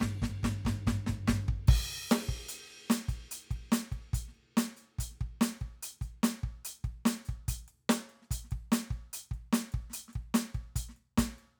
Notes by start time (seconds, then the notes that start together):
0.01 kick, snare, floor tom
0.23 kick, snare, floor tom
0.44 kick, snare, floor tom
0.66 kick, snare, floor tom
0.87 kick, snare, floor tom
1.07 kick, snare, floor tom
1.28 kick, snare, floor tom
1.49 kick
1.68 kick, crash
2.10 snare, hi-hat pedal, ride
2.29 kick
2.49 closed hi-hat
2.69 closed hi-hat
2.91 closed hi-hat, snare
3.09 closed hi-hat, kick
3.32 closed hi-hat
3.51 kick, closed hi-hat
3.72 closed hi-hat, snare
3.92 kick, closed hi-hat
4.14 closed hi-hat, kick
4.29 snare
4.35 closed hi-hat
4.58 closed hi-hat, snare
4.77 closed hi-hat
4.99 closed hi-hat, kick
5.11 snare
5.21 kick, closed hi-hat
5.42 closed hi-hat, snare
5.62 kick, closed hi-hat
5.83 closed hi-hat
6.02 closed hi-hat, kick
6.24 closed hi-hat, snare
6.44 kick
6.65 closed hi-hat
6.85 kick, closed hi-hat
7.06 closed hi-hat, snare
7.26 closed hi-hat, kick
7.49 closed hi-hat, kick
7.69 closed hi-hat
7.90 closed hi-hat, snare
8.10 closed hi-hat
8.23 snare
8.31 closed hi-hat, kick
8.45 snare
8.52 kick, closed hi-hat
8.72 closed hi-hat, snare
8.91 kick, closed hi-hat
9.14 closed hi-hat
9.32 kick, closed hi-hat
9.53 closed hi-hat, snare
9.73 kick, closed hi-hat
9.91 closed hi-hat, snare
10.09 snare
10.14 kick, closed hi-hat
10.35 closed hi-hat, snare
10.55 kick, closed hi-hat
10.76 closed hi-hat, kick
10.89 snare
10.97 closed hi-hat
11.18 closed hi-hat, kick, snare
11.39 closed hi-hat